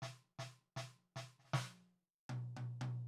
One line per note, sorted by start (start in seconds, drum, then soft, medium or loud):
0.02 snare medium
0.39 snare medium
0.76 snare medium
1.16 snare soft
1.39 snare soft
1.44 snare soft
1.54 snare medium
2.29 high tom medium
2.57 high tom medium
2.81 high tom loud